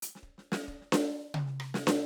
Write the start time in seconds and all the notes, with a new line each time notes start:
0.02 closed hi-hat
0.15 snare
0.23 kick
0.38 snare
0.52 snare
0.68 kick
0.81 snare
0.92 snare
1.18 snare
1.34 high tom
1.46 snare
1.60 cross-stick
1.74 snare
1.87 snare